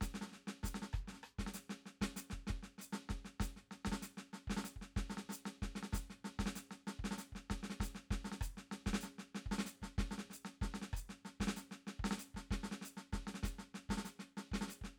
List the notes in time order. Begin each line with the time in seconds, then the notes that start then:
0.01 kick, snare, hi-hat pedal
0.14 snare
0.21 snare
0.27 snare
0.32 snare
0.47 snare
0.63 kick, snare, hi-hat pedal
0.74 snare
0.82 snare
0.93 kick, cross-stick
1.02 kick
1.08 snare
1.12 snare
1.17 snare
1.23 cross-stick
1.39 kick, snare
1.47 snare
1.54 snare, hi-hat pedal
1.70 snare
1.86 snare
2.01 kick, snare
2.16 snare, hi-hat pedal
2.30 kick, snare
2.47 kick, snare
2.63 snare
2.78 snare, hi-hat pedal
2.93 snare
3.09 kick, snare
3.25 snare
3.40 kick, snare, hi-hat pedal
3.56 snare
3.71 snare
3.85 kick, snare
3.92 snare
4.02 snare, hi-hat pedal
4.17 snare
4.33 snare
4.47 kick, snare
4.57 snare
4.64 snare, hi-hat pedal
4.76 kick
4.82 snare
4.96 kick, snare
5.10 snare
5.17 snare
5.29 snare, hi-hat pedal
5.46 snare
5.62 kick, snare
5.75 snare
5.83 snare
5.93 kick, snare, hi-hat pedal
6.10 snare
6.24 snare
6.39 kick, snare
6.46 snare
6.56 snare, hi-hat pedal
6.71 snare
6.87 snare
6.99 kick
7.04 snare
7.11 snare
7.18 snare, hi-hat pedal
7.32 kick, snare
7.50 kick, snare
7.63 snare
7.70 snare
7.80 kick, snare, hi-hat pedal
7.95 snare
8.11 kick, snare
8.25 snare
8.32 snare
8.41 kick, cross-stick, hi-hat pedal
8.57 snare
8.71 snare
8.86 kick, snare
8.93 snare
9.01 snare, hi-hat pedal
9.18 snare
9.35 snare
9.46 kick
9.51 snare
9.58 snare
9.65 snare, hi-hat pedal
9.82 kick, snare
9.98 kick, snare
10.11 snare
10.18 snare
10.30 snare, hi-hat pedal
10.45 snare
10.61 kick, snare
10.74 snare
10.82 snare
10.93 kick, cross-stick, hi-hat pedal
11.09 snare
11.25 snare
11.40 kick, snare
11.47 snare
11.56 snare, hi-hat pedal
11.71 snare
11.87 snare
11.99 kick
12.04 snare
12.11 snare
12.17 snare, hi-hat pedal
12.34 kick, snare
12.51 kick, snare
12.63 snare
12.71 snare
12.85 hi-hat pedal
12.97 snare
13.13 kick, snare
13.27 snare
13.34 snare
13.43 kick, snare, hi-hat pedal
13.59 snare
13.74 snare
13.89 kick, snare
13.97 snare
14.05 snare, hi-hat pedal
14.19 snare
14.37 snare
14.52 kick, snare
14.61 snare
14.67 snare, hi-hat pedal
14.81 kick, snare